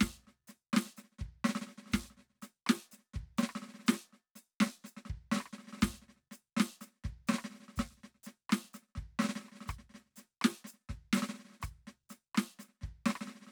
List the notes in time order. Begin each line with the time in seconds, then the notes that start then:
0.01 kick, snare, hi-hat pedal
0.16 snare
0.20 snare
0.24 snare
0.28 snare
0.48 snare, hi-hat pedal
0.74 snare
0.78 snare
0.87 snare
0.98 snare, hi-hat pedal
1.05 snare
1.13 snare
1.20 kick, snare
1.46 snare, hi-hat pedal
1.50 snare
1.56 snare
1.63 snare
1.68 snare
1.70 snare
1.79 snare
1.83 snare
1.87 snare
1.91 kick, snare, hi-hat pedal
1.95 snare
2.00 kick
2.05 snare
2.11 snare
2.18 snare
2.20 snare
2.31 snare
2.34 snare
2.36 snare
2.43 snare, hi-hat pedal
2.68 cross-stick, snare
2.93 snare, hi-hat pedal
2.99 snare
3.15 kick, snare
3.23 kick
3.25 kick
3.39 snare, hi-hat pedal
3.44 snare
3.50 cross-stick
3.56 snare
3.61 snare
3.63 snare
3.67 snare
3.70 snare
3.75 snare
3.80 snare
3.85 snare, hi-hat pedal
3.89 snare
3.94 snare
4.05 snare
4.08 snare
4.11 snare
4.14 snare
4.37 snare, hi-hat pedal
4.61 snare
4.63 snare
4.67 snare
4.85 snare, hi-hat pedal
4.98 snare
5.06 snare
5.11 kick
5.33 snare, hi-hat pedal
5.35 snare
5.38 cross-stick, snare
5.47 cross-stick
5.54 snare
5.59 snare
5.64 snare
5.69 snare
5.74 snare
5.78 snare
5.83 kick, snare, hi-hat pedal
5.90 kick
5.93 kick, snare
6.03 snare
6.08 snare
6.10 snare
6.18 snare
6.32 snare, hi-hat pedal
6.58 snare
6.61 snare
6.82 snare, hi-hat pedal
6.88 snare
6.93 snare
6.96 snare
7.05 kick, snare
7.15 kick
7.29 snare, hi-hat pedal
7.33 snare
7.35 snare
7.40 cross-stick
7.45 snare
7.51 snare
7.52 snare
7.55 snare
7.61 snare
7.63 snare
7.69 snare
7.74 snare, hi-hat pedal
7.79 kick, snare
7.87 kick
7.92 snare
7.98 snare
8.05 snare
8.16 snare
8.24 snare, hi-hat pedal
8.51 cross-stick, snare
8.65 snare
8.75 hi-hat pedal
8.84 snare
8.90 snare
8.96 kick, snare
9.04 kick
9.20 snare, hi-hat pedal
9.23 snare
9.25 snare
9.30 snare
9.37 snare
9.41 snare
9.45 snare
9.50 cross-stick, snare
9.56 snare
9.62 snare
9.67 kick, cross-stick, snare, hi-hat pedal
9.80 snare
9.91 snare
9.95 snare
10.01 snare
10.07 snare
10.11 snare
10.14 snare, hi-hat pedal
10.19 snare
10.43 cross-stick, snare
10.66 snare, hi-hat pedal
10.75 snare
10.82 snare
10.90 kick, snare
11.14 snare, hi-hat pedal
11.17 snare
11.19 snare
11.23 snare
11.30 snare
11.35 snare
11.40 snare
11.46 snare
11.48 snare
11.51 snare
11.54 snare
11.61 kick, cross-stick, snare, hi-hat pedal
11.88 snare
12.10 snare, hi-hat pedal
12.36 cross-stick, snare
12.60 snare, hi-hat pedal
12.64 snare
12.70 snare
12.75 snare
12.80 snare
12.82 kick, snare
12.90 kick
13.07 snare, hi-hat pedal
13.10 cross-stick, snare
13.17 cross-stick
13.22 snare
13.27 snare
13.29 snare
13.31 snare
13.36 snare
13.41 snare
13.43 snare
13.48 snare